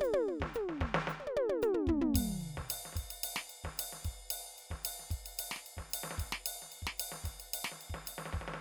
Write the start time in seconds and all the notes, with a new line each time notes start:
0.01 hi-hat pedal, high tom
0.14 high tom
0.28 high tom
0.41 kick, snare
0.54 hi-hat pedal, mid tom
0.69 snare
0.78 kick, snare
0.82 snare
0.95 snare
1.08 snare, hi-hat pedal
1.20 high tom
1.27 high tom
1.37 high tom
1.50 high tom
1.62 hi-hat pedal, mid tom
1.74 mid tom
1.87 kick, floor tom
1.94 kick
2.01 floor tom
2.15 kick, hi-hat pedal, ride bell
2.28 kick
2.41 ride
2.58 kick, snare
2.69 hi-hat pedal, ride bell
2.86 snare
2.93 kick, snare
2.97 ride
3.01 kick
3.11 ride
3.24 hi-hat pedal, ride bell
3.36 snare
3.50 ride
3.64 kick, snare
3.78 hi-hat pedal, ride bell
3.93 snare
4.02 kick, snare, ride
4.08 snare
4.11 snare
4.14 snare
4.17 snare
4.31 hi-hat pedal, ride bell
4.58 ride
4.71 kick, snare
4.84 hi-hat pedal, ride bell
5.00 snare
5.10 kick, snare, ride
5.26 ride
5.38 hi-hat pedal, ride bell
5.52 snare
5.57 snare
5.67 ride
5.77 kick, snare
5.90 hi-hat pedal, ride bell
6.04 snare
6.11 snare
6.19 kick, ride
6.33 snare
6.46 hi-hat pedal, ride bell
6.63 snare
6.72 ride
6.83 kick
6.87 snare
6.98 hi-hat pedal, ride bell
7.12 snare
7.25 kick, snare, ride
7.32 snare
7.35 snare
7.40 ride
7.54 hi-hat pedal, ride bell
7.65 snare
7.72 snare
7.81 ride
7.90 kick
7.95 snare
8.06 hi-hat pedal, ride bell
8.19 snare
8.26 snare
8.33 kick, snare
8.40 kick, snare
8.48 snare
8.54 snare